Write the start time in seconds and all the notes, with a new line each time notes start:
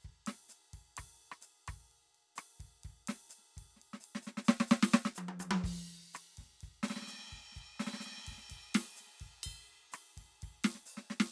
0.01 kick, hi-hat pedal
0.10 kick
0.27 snare, ride
0.49 snare, hi-hat pedal, ride
0.74 kick, ride
0.96 kick, cross-stick, hi-hat pedal, ride
1.04 kick
1.22 ride
1.32 cross-stick
1.42 hi-hat pedal, ride
1.68 kick, cross-stick, ride
1.74 kick
1.92 ride
2.15 ride
2.36 cross-stick, hi-hat pedal, ride
2.60 kick, ride
2.65 kick
2.83 kick, hi-hat pedal, ride
2.90 kick
3.08 snare, ride
3.30 hi-hat pedal, ride
3.38 snare
3.57 kick, ride
3.62 kick
3.77 snare
3.82 ride
3.94 snare
4.00 hi-hat pedal, ride
4.15 snare
4.23 hi-hat pedal
4.27 snare
4.38 snare
4.45 hi-hat pedal
4.49 snare
4.60 snare
4.67 hi-hat pedal
4.71 snare
4.83 snare
4.91 snare, hi-hat pedal
5.06 snare
5.15 hi-hat pedal, high tom
5.29 high tom
5.40 kick, hi-hat pedal, high tom
5.51 high tom
5.64 kick, hi-hat pedal, high tom, crash
5.71 kick
6.14 cross-stick, hi-hat pedal, ride
6.38 kick, snare, ride
6.43 kick, snare
6.49 snare
6.52 snare
6.61 kick, hi-hat pedal, ride
6.68 kick
6.83 snare, ride
6.89 snare, ride
6.96 snare
7.02 snare
7.08 snare, hi-hat pedal
7.13 snare
7.19 snare
7.23 snare
7.27 snare
7.31 kick, snare
7.35 snare
7.38 snare
7.40 snare
7.52 snare, hi-hat pedal
7.57 kick
7.61 kick
7.80 snare, ride
7.87 snare
7.94 snare
8.00 snare, hi-hat pedal
8.06 snare
8.12 snare
8.18 snare
8.24 kick, snare, ride
8.31 kick, snare
8.38 snare
8.49 kick, snare, hi-hat pedal, ride
8.56 kick
8.75 snare, ride
8.96 hi-hat pedal, ride
9.00 snare
9.07 snare
9.20 kick, ride
9.26 kick
9.44 kick, hi-hat pedal, ride bell
9.52 kick
9.69 ride
9.92 cross-stick, hi-hat pedal, ride
10.17 kick, snare, ride
10.25 snare
10.41 kick, hi-hat pedal, ride
10.64 snare, ride
10.75 snare
10.86 hi-hat pedal
10.97 snare
11.10 snare
11.20 snare